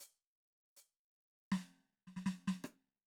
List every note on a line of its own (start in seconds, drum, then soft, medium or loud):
0.00 hi-hat pedal medium
0.77 hi-hat pedal soft
1.52 snare medium
2.07 snare soft
2.16 snare soft
2.26 snare medium
2.48 snare medium
2.64 cross-stick medium